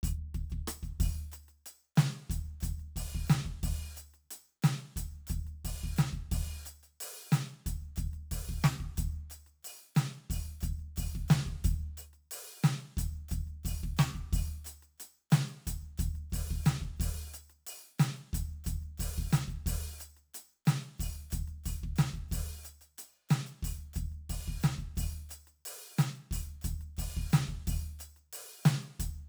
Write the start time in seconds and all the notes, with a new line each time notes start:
0.03 kick, percussion
0.34 kick, percussion
0.50 kick, percussion
0.68 cross-stick, percussion
0.83 kick, percussion
1.00 kick, percussion
1.32 percussion
1.33 percussion
1.48 percussion
1.66 percussion
1.96 snare, percussion
1.98 percussion
2.13 percussion
2.30 kick, percussion
2.60 kick, percussion
2.63 percussion
2.79 percussion
2.96 kick, percussion
3.15 kick
3.27 snare, percussion
3.30 percussion
3.45 kick, percussion
3.63 kick, percussion
3.96 percussion
4.14 percussion
4.31 percussion
4.62 snare, percussion
4.79 percussion
4.96 kick, percussion
5.27 percussion
5.30 kick, percussion
5.47 percussion
5.65 kick, percussion
5.83 kick
5.96 percussion
5.98 snare, percussion
6.13 kick, percussion
6.32 kick, percussion
6.65 percussion
6.83 percussion
7.00 percussion
7.31 snare, percussion
7.49 percussion
7.66 kick, percussion
7.96 percussion
7.98 kick, percussion
8.13 percussion
8.31 kick, percussion
8.49 kick
8.62 percussion
8.64 snare, percussion
8.80 kick, percussion
8.96 percussion
8.97 kick, percussion
9.30 percussion
9.46 percussion
9.63 percussion
9.64 percussion
9.95 snare, percussion
9.97 percussion
10.14 percussion
10.30 kick, percussion
10.61 kick, percussion
10.63 percussion
10.79 percussion
10.96 kick, percussion
11.15 kick
11.28 snare, percussion
11.30 percussion
11.46 kick, percussion
11.64 kick, percussion
11.97 percussion
12.13 percussion
12.31 percussion
12.63 snare, percussion
12.80 percussion
12.97 kick, percussion
13.29 percussion
13.31 kick, percussion
13.47 percussion
13.63 kick, percussion
13.66 percussion
13.83 kick
13.97 percussion
13.99 snare, percussion
14.15 kick, percussion
14.33 kick, percussion
14.65 percussion
14.66 percussion
14.83 percussion
14.98 percussion
15.00 percussion
15.30 percussion
15.32 snare, percussion
15.48 percussion
15.65 kick, percussion
15.67 percussion
15.98 kick, percussion
15.99 percussion
16.15 percussion
16.30 kick, percussion
16.33 percussion
16.51 kick
16.63 percussion
16.66 snare, percussion
16.81 kick, percussion
16.97 kick, percussion
17.01 percussion
17.32 percussion
17.34 percussion
17.50 percussion
17.67 percussion
17.99 snare, percussion
18.16 percussion
18.33 kick, percussion
18.64 kick, percussion
18.66 percussion
18.83 percussion
18.98 kick, percussion
19.00 percussion
19.18 kick
19.30 snare, percussion
19.33 percussion
19.48 kick, percussion
19.66 kick, percussion
19.99 percussion
20.00 percussion
20.17 percussion
20.34 percussion
20.65 snare, percussion
20.67 percussion
20.83 percussion
20.98 kick, percussion
21.01 percussion
21.30 percussion
21.32 kick, percussion
21.48 percussion
21.64 kick, percussion
21.66 percussion
21.83 kick
21.96 percussion
21.98 snare, percussion
22.13 kick, percussion
22.28 kick, percussion
22.32 percussion
22.64 percussion
22.81 percussion
22.98 percussion
23.29 snare, percussion
23.46 percussion
23.63 kick, percussion
23.64 percussion
23.93 percussion
23.96 kick, percussion
24.12 percussion
24.30 kick, percussion
24.48 kick
24.60 percussion
24.63 snare, percussion
24.78 kick, percussion
24.96 kick, percussion
24.98 percussion
25.29 percussion
25.31 percussion
25.47 percussion
25.65 percussion
25.97 percussion
25.98 snare, percussion
26.15 percussion
26.31 kick, percussion
26.33 percussion
26.61 kick, percussion
26.64 percussion
26.81 percussion
26.97 kick, percussion
26.99 percussion
27.17 kick
27.30 percussion
27.33 snare, percussion
27.48 kick, percussion
27.67 kick, percussion
27.99 percussion
28.16 percussion
28.33 percussion
28.63 percussion
28.65 snare, percussion
28.82 percussion
29.00 kick, percussion